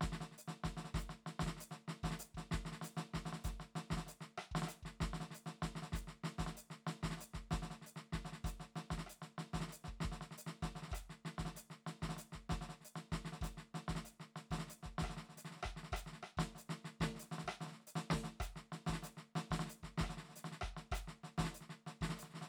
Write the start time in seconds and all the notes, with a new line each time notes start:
0.01 kick, snare
0.12 snare
0.21 snare
0.31 snare
0.38 hi-hat pedal
0.48 snare
0.64 kick, snare
0.77 snare
0.84 snare
0.94 kick
0.99 hi-hat pedal
1.09 snare
1.26 snare
1.39 kick, snare
1.46 snare
1.57 snare, hi-hat pedal
1.71 snare
1.88 snare
2.03 kick, snare
2.11 snare
2.19 cross-stick, hi-hat pedal
2.35 kick, snare
2.51 kick, snare
2.65 snare
2.72 snare
2.82 snare, hi-hat pedal
2.97 snare
3.14 kick, snare
3.26 snare
3.33 snare
3.39 snare
3.44 kick, snare, hi-hat pedal
3.60 snare
3.76 snare
3.90 kick, snare
3.97 snare
4.07 snare, hi-hat pedal
4.21 snare
4.38 cross-stick
4.51 kick, snare
4.62 snare
4.67 cross-stick, hi-hat pedal
4.83 kick, snare
5.01 kick, snare
5.13 snare
5.20 snare
5.31 snare, hi-hat pedal
5.46 snare
5.62 kick, snare
5.75 snare
5.82 snare
5.93 kick, hi-hat pedal
6.07 snare
6.24 snare
6.39 kick, snare
6.46 snare
6.55 cross-stick, hi-hat pedal
6.70 snare
6.87 snare
7.03 kick, snare
7.10 snare
7.17 snare, hi-hat pedal
7.34 kick, snare
7.51 kick, snare
7.62 snare
7.70 snare
7.82 snare
7.86 hi-hat pedal
7.96 snare
8.13 kick, snare
8.25 snare
8.33 snare
8.44 kick, snare, hi-hat pedal
8.60 snare
8.76 snare
8.90 kick, snare
8.98 snare
9.07 cross-stick, hi-hat pedal
9.22 snare
9.38 snare
9.54 kick, snare
9.61 snare
9.68 snare
9.72 hi-hat pedal
9.84 kick, snare
10.01 snare
10.05 kick
10.12 snare
10.21 snare
10.38 hi-hat pedal
10.47 snare
10.62 kick, snare
10.75 snare
10.82 snare
10.88 kick, snare
10.93 cross-stick, hi-hat pedal
11.10 snare
11.25 snare
11.38 kick, snare
11.45 snare
11.55 snare, hi-hat pedal
11.70 snare
11.87 snare
12.02 kick, snare
12.09 snare
12.17 snare, hi-hat pedal
12.32 kick, snare
12.49 kick, snare
12.61 snare
12.69 snare
12.81 snare
12.85 hi-hat pedal
12.96 snare
13.12 kick, snare
13.25 snare
13.32 snare
13.41 kick, hi-hat pedal
13.57 snare
13.74 snare
13.88 kick, snare
13.95 snare
14.05 cross-stick, hi-hat pedal
14.20 snare
14.36 snare
14.51 kick, snare
14.59 snare
14.67 snare, hi-hat pedal
14.83 kick, snare
14.98 kick, snare
15.04 cross-stick
15.10 snare
15.17 snare
15.23 snare
15.29 snare
15.36 snare, hi-hat pedal
15.45 snare
15.51 snare
15.55 snare
15.63 kick, cross-stick
15.76 snare
15.83 snare
15.89 kick, cross-stick, snare
15.96 hi-hat pedal
16.06 snare
16.13 snare
16.23 cross-stick
16.37 kick, snare
16.55 snare, hi-hat pedal
16.69 snare
16.85 snare
17.00 kick, snare
17.15 snare
17.20 snare, hi-hat pedal
17.32 snare
17.38 snare
17.44 kick, snare
17.48 cross-stick
17.61 snare
17.67 snare
17.71 snare
17.80 snare
17.87 cross-stick, hi-hat pedal
17.96 snare
18.10 kick, snare
18.24 snare
18.40 kick, cross-stick, hi-hat pedal
18.56 snare
18.72 snare
18.87 kick, snare
18.93 snare
19.03 snare, hi-hat pedal
19.17 snare
19.36 snare
19.51 kick, snare
19.59 snare
19.66 snare, hi-hat pedal
19.83 kick, snare
19.98 kick, snare
20.04 cross-stick
20.09 snare
20.17 snare
20.23 snare
20.29 snare
20.36 snare, hi-hat pedal
20.44 snare
20.52 snare
20.61 kick, cross-stick
20.77 snare
20.92 kick, cross-stick, hi-hat pedal
20.99 kick
21.08 snare
21.24 snare
21.38 kick, snare
21.44 snare
21.51 snare, hi-hat pedal
21.61 snare
21.70 snare
21.87 snare
22.01 kick, snare
22.09 snare
22.15 snare, hi-hat pedal
22.23 snare
22.30 snare
22.34 snare
22.41 snare